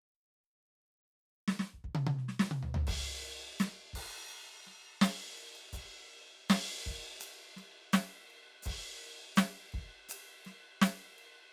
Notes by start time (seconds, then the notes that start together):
1.48 snare
1.59 snare
1.73 kick
1.84 kick
1.95 high tom
2.07 high tom
2.18 snare
2.39 snare
2.51 high tom
2.63 floor tom
2.74 floor tom
2.87 kick, ride
3.59 snare, hi-hat pedal
3.93 kick, crash
4.28 hi-hat pedal
4.65 snare, ride
5.01 snare, hi-hat pedal, ride
5.37 ride
5.55 ride
5.73 kick, hi-hat pedal, ride
6.15 ride
6.49 snare, hi-hat pedal, ride
6.86 kick, ride
7.20 hi-hat pedal, ride
7.56 snare, ride
7.93 snare, hi-hat pedal, ride
8.30 ride
8.62 kick, hi-hat pedal, ride
9.36 snare, hi-hat pedal, ride
9.72 kick, ride
10.09 hi-hat pedal, ride
10.45 snare, ride
10.81 snare, hi-hat pedal, ride
11.18 ride